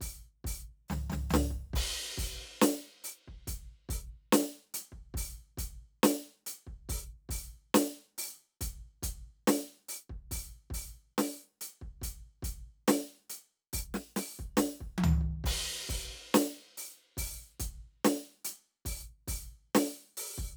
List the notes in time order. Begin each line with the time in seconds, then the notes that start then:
0.01 open hi-hat, kick
0.45 open hi-hat, kick, ride
0.89 snare, floor tom, hi-hat pedal
1.10 snare, floor tom
1.30 floor tom, hi-hat pedal
1.34 snare
1.51 kick
1.74 kick, crash, ride
2.18 open hi-hat, kick
2.62 open hi-hat, snare
3.04 open hi-hat
3.28 kick
3.47 open hi-hat, kick
3.89 open hi-hat, kick
4.33 open hi-hat, snare
4.42 snare
4.74 open hi-hat
4.92 kick
5.14 open hi-hat, kick
5.58 open hi-hat, kick
6.03 open hi-hat, snare
6.47 open hi-hat
6.67 kick
6.89 open hi-hat, kick
7.29 open hi-hat, kick
7.75 open hi-hat, snare
8.18 open hi-hat
8.61 open hi-hat, kick
9.03 open hi-hat, kick
9.48 open hi-hat, snare
9.89 open hi-hat
10.10 kick
10.31 open hi-hat, kick
10.71 open hi-hat, kick
11.18 open hi-hat, snare
11.24 cross-stick
11.61 open hi-hat
11.82 kick
12.02 open hi-hat, kick
12.43 open hi-hat, kick
12.88 open hi-hat, snare
13.30 open hi-hat
13.73 open hi-hat, kick
13.94 snare
14.17 open hi-hat, snare
14.39 kick
14.57 open hi-hat, snare
14.81 kick
14.98 high tom
15.04 floor tom
15.21 kick
15.44 kick, crash, ride
15.89 open hi-hat, kick
16.34 open hi-hat, snare
16.78 open hi-hat
17.17 open hi-hat, kick
17.60 open hi-hat, kick
18.05 open hi-hat, snare
18.45 open hi-hat
18.85 open hi-hat, kick
19.28 open hi-hat, kick
19.75 open hi-hat, snare
20.17 open hi-hat
20.38 kick